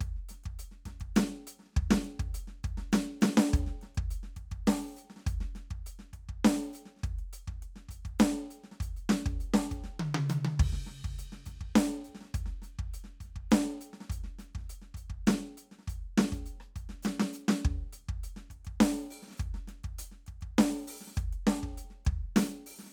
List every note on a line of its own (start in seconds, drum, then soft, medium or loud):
0.01 kick medium
0.01 closed hi-hat medium
0.16 snare soft
0.29 closed hi-hat medium
0.29 snare soft
0.44 kick medium
0.44 closed hi-hat soft
0.59 closed hi-hat medium
0.72 snare soft
0.86 kick soft
0.86 snare soft
0.86 closed hi-hat soft
1.00 kick medium
1.00 closed hi-hat soft
1.16 closed hi-hat medium
1.16 snare loud
1.42 snare soft
1.47 closed hi-hat medium
1.60 snare soft
1.63 snare soft
1.66 snare soft
1.74 kick loud
1.74 snare soft
1.74 closed hi-hat soft
1.91 snare loud
2.05 snare soft
2.05 closed hi-hat soft
2.20 kick medium
2.20 closed hi-hat soft
2.35 closed hi-hat medium
2.48 snare soft
2.64 closed hi-hat soft
2.64 kick medium
2.78 snare soft
2.93 snare loud
2.93 hi-hat pedal medium
3.22 snare loud
3.22 hi-hat pedal medium
3.38 snare loud
3.54 closed hi-hat soft
3.54 kick loud
3.67 snare soft
3.82 snare soft
3.82 closed hi-hat soft
3.95 kick medium
3.95 closed hi-hat soft
4.11 closed hi-hat medium
4.24 snare soft
4.37 kick soft
4.37 closed hi-hat soft
4.52 kick medium
4.52 closed hi-hat soft
4.67 open hi-hat medium
4.67 snare loud
4.77 snare soft
4.81 snare soft
4.88 snare soft
4.97 closed hi-hat soft
4.97 hi-hat pedal soft
5.10 snare soft
5.17 snare soft
5.20 snare soft
5.27 closed hi-hat medium
5.27 kick loud
5.41 snare soft
5.56 snare soft
5.56 closed hi-hat soft
5.71 kick medium
5.71 closed hi-hat soft
5.87 closed hi-hat medium
5.99 snare soft
6.13 kick soft
6.13 closed hi-hat soft
6.29 kick medium
6.29 closed hi-hat soft
6.45 open hi-hat medium
6.45 snare loud
6.53 snare soft
6.73 closed hi-hat medium
6.73 hi-hat pedal soft
6.86 snare soft
6.97 snare soft
6.99 snare soft
7.04 kick medium
7.04 closed hi-hat soft
7.19 closed hi-hat soft
7.33 closed hi-hat medium
7.48 kick medium
7.48 snare soft
7.63 closed hi-hat soft
7.76 snare soft
7.89 closed hi-hat medium
7.89 kick soft
8.05 kick medium
8.05 closed hi-hat soft
8.20 closed hi-hat medium
8.20 snare loud
8.36 snare soft
8.51 closed hi-hat medium
8.64 snare soft
8.72 snare soft
8.81 closed hi-hat medium
8.81 kick medium
8.97 closed hi-hat soft
9.10 snare loud
9.26 closed hi-hat soft
9.26 kick medium
9.41 closed hi-hat soft
9.54 snare loud
9.71 closed hi-hat soft
9.71 kick medium
9.84 snare soft
10.00 high tom loud
10.15 high tom loud
10.30 hi-hat pedal medium
10.30 high tom loud
10.45 high tom loud
10.60 kick loud
10.60 crash medium
10.73 snare soft
10.87 snare soft
11.04 closed hi-hat soft
11.04 kick medium
11.19 closed hi-hat medium
11.33 snare soft
11.46 closed hi-hat soft
11.46 kick soft
11.46 snare soft
11.60 kick medium
11.60 closed hi-hat soft
11.76 open hi-hat medium
11.76 snare loud
12.05 open hi-hat soft
12.05 hi-hat pedal soft
12.09 kick soft
12.15 snare soft
12.21 snare soft
12.25 snare soft
12.34 closed hi-hat medium
12.34 kick medium
12.46 snare soft
12.62 closed hi-hat soft
12.62 snare soft
12.79 kick medium
12.79 closed hi-hat soft
12.94 closed hi-hat medium
13.04 snare soft
13.21 closed hi-hat soft
13.21 kick soft
13.21 snare soft
13.36 kick medium
13.51 closed hi-hat medium
13.51 snare loud
13.60 snare soft
13.69 snare soft
13.72 snare soft
13.81 closed hi-hat medium
13.94 snare soft
14.01 snare soft
14.05 snare soft
14.10 closed hi-hat medium
14.10 kick medium
14.24 snare soft
14.39 closed hi-hat soft
14.39 snare soft
14.54 kick medium
14.54 snare soft
14.54 closed hi-hat soft
14.61 snare soft
14.70 closed hi-hat medium
14.82 snare soft
14.95 closed hi-hat soft
14.95 kick soft
15.10 kick medium
15.10 closed hi-hat soft
15.27 closed hi-hat medium
15.27 snare loud
15.41 snare soft
15.58 closed hi-hat medium
15.72 snare soft
15.79 snare soft
15.83 snare soft
15.88 closed hi-hat medium
15.88 kick medium
16.18 snare loud
16.32 closed hi-hat soft
16.32 kick medium
16.32 snare soft
16.46 closed hi-hat soft
16.61 cross-stick soft
16.76 closed hi-hat soft
16.76 kick medium
16.89 snare soft
17.03 snare medium
17.03 hi-hat pedal medium
17.20 snare loud
17.33 hi-hat pedal medium
17.49 snare loud
17.65 kick loud
17.93 closed hi-hat medium
18.08 kick medium
18.08 snare soft
18.24 closed hi-hat medium
18.37 snare soft
18.50 kick soft
18.50 closed hi-hat soft
18.65 kick medium
18.65 closed hi-hat soft
18.81 open hi-hat medium
18.81 snare loud
19.11 open hi-hat medium
19.23 snare soft
19.28 snare soft
19.31 snare soft
19.33 snare soft
19.38 kick medium
19.38 closed hi-hat soft
19.38 hi-hat pedal soft
19.55 snare soft
19.68 snare soft
19.68 closed hi-hat soft
19.84 kick medium
19.84 closed hi-hat soft
19.99 closed hi-hat loud
20.12 snare soft
20.27 kick soft
20.27 closed hi-hat soft
20.41 kick soft
20.41 closed hi-hat soft
20.58 open hi-hat medium
20.58 snare loud
20.88 open hi-hat medium
21.01 snare soft
21.07 snare soft
21.11 snare soft
21.16 kick medium
21.16 snare soft
21.16 closed hi-hat soft
21.16 hi-hat pedal soft
21.33 closed hi-hat soft
21.47 snare loud
21.63 kick medium
21.63 closed hi-hat soft
21.78 closed hi-hat medium
21.91 snare soft
22.06 kick loud
22.06 closed hi-hat soft
22.37 open hi-hat loud
22.37 snare loud
22.45 snare soft
22.67 open hi-hat medium
22.79 snare soft
22.84 snare soft
22.87 snare soft